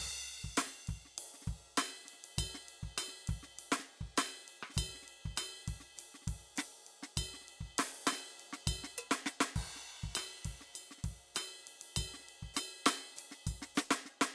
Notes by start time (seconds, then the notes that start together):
0.06 kick
0.44 kick
0.57 snare, hi-hat pedal, ride bell
0.67 snare
0.87 kick, ride
0.95 kick
1.05 snare
1.18 ride
1.34 snare
1.42 snare
1.47 kick, ride
1.53 kick
1.77 snare, hi-hat pedal, ride bell
1.89 snare
2.03 snare, hi-hat pedal
2.08 ride
2.13 snare
2.18 snare
2.22 snare, ride
2.26 snare
2.36 kick, hi-hat pedal, ride bell
2.45 kick
2.54 snare
2.68 ride
2.83 kick
2.98 cross-stick, hi-hat pedal, ride bell
3.08 snare
3.27 kick, ride
3.36 kick
3.43 snare
3.59 ride
3.72 snare
3.79 snare
3.89 ride
4.01 kick
4.17 snare, hi-hat pedal, ride bell
4.48 ride
4.62 cross-stick
4.70 snare, hi-hat pedal
4.77 kick, ride bell
4.83 kick
4.88 kick
4.95 snare
5.02 snare
5.08 ride
5.25 kick
5.31 kick
5.36 cross-stick, hi-hat pedal, ride bell
5.67 kick, ride
5.74 kick
5.80 snare
5.97 hi-hat pedal, ride
6.14 snare
6.22 snare
6.27 kick, ride
6.34 kick
6.56 snare, hi-hat pedal, ride, percussion
6.87 ride
7.03 snare
7.16 kick, hi-hat pedal, ride bell
7.23 kick
7.33 snare
7.41 snare
7.48 ride
7.61 kick
7.78 snare, hi-hat pedal, ride
8.07 snare, ride bell
8.12 snare
8.38 hi-hat pedal, ride
8.53 snare
8.64 kick, hi-hat pedal, ride bell
8.74 kick
8.79 kick
8.84 snare
8.97 hi-hat pedal, percussion
9.11 snare
9.26 snare
9.40 snare
9.54 kick, hi-hat pedal, crash
9.62 kick
9.67 kick
9.76 snare
10.03 kick
10.09 kick
10.15 cross-stick, hi-hat pedal, ride bell
10.45 kick, ride
10.51 kick
10.61 snare
10.73 hi-hat pedal, ride bell
10.91 snare
10.98 snare
11.04 kick, ride
11.11 kick
11.35 cross-stick, hi-hat pedal, ride bell
11.67 snare, ride
11.75 snare
11.81 ride
11.96 kick, hi-hat pedal, ride bell
12.04 kick
12.14 snare
12.19 snare
12.29 ride
12.42 kick
12.54 snare, hi-hat pedal, ride bell
12.86 snare, ride bell
13.16 hi-hat pedal, ride
13.31 snare
13.46 kick, ride bell
13.54 kick
13.62 snare
13.75 snare, hi-hat pedal
13.91 snare
14.05 snare
14.21 snare